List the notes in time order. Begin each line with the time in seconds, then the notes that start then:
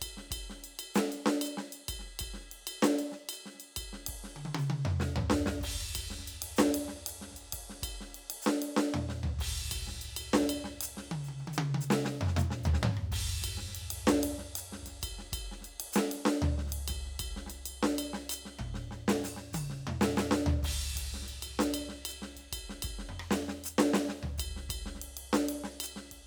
0.01 kick, ride bell
0.17 snare
0.31 kick, ride bell
0.49 snare
0.56 snare
0.62 snare, ride bell
0.79 ride bell
0.94 snare, hi-hat pedal
1.12 ride bell
1.26 snare
1.41 hi-hat pedal, ride bell
1.57 snare
1.72 ride bell
1.88 kick, ride bell
1.99 snare
2.05 snare
2.19 kick, ride bell
2.33 snare
2.40 snare
2.51 ride
2.67 ride bell
2.82 snare, hi-hat pedal
2.98 ride bell
3.12 snare
3.29 hi-hat pedal, ride bell
3.45 snare
3.54 snare
3.60 snare, ride bell
3.76 kick, ride bell
3.92 snare
4.06 kick, ride
4.23 snare
4.36 high tom
4.45 high tom
4.54 hi-hat pedal, high tom
4.70 high tom
4.85 mid tom
5.00 snare
5.16 floor tom
5.30 snare
5.46 snare
5.59 kick, hi-hat pedal, crash
5.67 kick
5.73 kick
5.81 cross-stick
5.95 kick, ride bell
6.10 snare
6.18 snare
6.27 ride bell
6.42 ride
6.56 snare, hi-hat pedal
6.66 snare
6.74 ride
6.88 snare
6.96 snare
7.06 hi-hat pedal, ride
7.21 snare
7.31 kick, snare
7.36 ride bell
7.52 kick, hi-hat pedal, ride
7.69 snare
7.82 kick, ride bell
8.00 snare
8.14 ride
8.30 ride
8.42 hi-hat pedal
8.46 snare
8.62 ride
8.76 snare
8.94 mid tom
9.08 snare
9.23 floor tom
9.39 kick, hi-hat pedal, crash
9.58 snare
9.71 kick, ride bell
9.77 kick
9.87 snare
9.92 snare
9.97 snare
10.01 ride bell
10.16 ride bell
10.33 snare
10.41 snare
10.49 ride bell
10.64 snare
10.81 hi-hat pedal, ride
10.97 snare
11.11 high tom
11.24 hi-hat pedal
11.28 high tom
11.39 high tom, crash
11.47 open hi-hat, high tom
11.53 hi-hat pedal
11.58 high tom
11.74 high tom
11.81 hi-hat pedal
11.90 snare
12.05 snare
12.21 mid tom
12.27 snare
12.36 hi-hat pedal, mid tom
12.50 snare
12.63 floor tom, hi-hat pedal
12.73 snare
12.83 floor tom
12.92 hi-hat pedal
12.97 cross-stick
13.11 kick, hi-hat pedal, crash
13.27 cross-stick
13.42 kick, ride bell
13.57 snare
13.67 snare
13.75 ride
13.90 ride
14.07 snare
14.23 ride
14.38 snare
14.55 hi-hat pedal, ride
14.72 snare
14.82 kick, snare, ride bell
15.01 kick, hi-hat pedal, ride bell
15.18 snare
15.32 kick, ride bell
15.39 kick
15.51 snare
15.61 snare, ride bell
15.80 ride
15.92 snare, hi-hat pedal
16.11 ride
16.25 snare
16.42 floor tom
16.58 snare
16.66 snare, hi-hat pedal
16.72 ride
16.88 kick, snare, ride bell
17.04 snare
17.19 kick, ride bell
17.25 kick
17.36 snare
17.46 snare, ride bell
17.65 ride bell
17.83 snare
17.98 ride bell
18.13 snare
18.29 hi-hat pedal, ride bell
18.45 snare
18.58 kick, mid tom
18.66 kick
18.69 kick
18.74 snare
18.91 snare
19.08 snare
19.24 snare, hi-hat pedal
19.36 snare
19.52 kick, hi-hat pedal, open hi-hat, high tom
19.69 snare
19.87 mid tom
20.01 snare
20.17 snare
20.31 snare
20.46 floor tom
20.62 kick, hi-hat pedal, crash
20.83 cross-stick
20.95 kick, ride
21.14 snare
21.22 snare
21.28 snare, ride bell
21.42 ride bell
21.59 snare, hi-hat pedal
21.74 ride bell
21.88 snare
22.05 hi-hat pedal, ride bell
22.22 snare
22.36 kick, snare, ride bell
22.52 kick, hi-hat pedal, ride bell
22.69 snare
22.82 kick, ride bell
22.90 kick
22.98 snare
23.09 mid tom
23.19 cross-stick
23.31 snare, hi-hat pedal
23.48 snare
23.64 hi-hat pedal, ride bell
23.78 snare
23.93 snare
24.08 snare
24.20 snare, floor tom
24.38 kick, hi-hat pedal, ride bell
24.56 snare
24.69 kick, ride bell
24.85 snare
24.95 snare
25.01 ride
25.17 ride
25.33 snare, hi-hat pedal
25.48 ride
25.63 snare
25.80 hi-hat pedal, ride bell
25.96 snare
26.11 kick, snare, ride